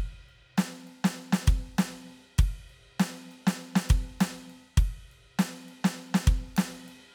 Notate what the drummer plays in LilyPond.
\new DrumStaff \drummode { \time 4/4 \tempo 4 = 100 r8 cymr8 <rb sn>8 cymr16 sn16 r16 sn16 <rb bd>8 <sn cymr>8 cymr8 | <cymr bd>8 cymr8 <sn cymr>8 rb16 sn16 r16 sn16 <rb bd>8 <rb sn>8 cymr8 | <bd cymr>8 cymr8 <sn cymr>8 cymr16 sn16 r16 sn16 <bd cymr sn>8 <cymr sn>8 cymr8 | }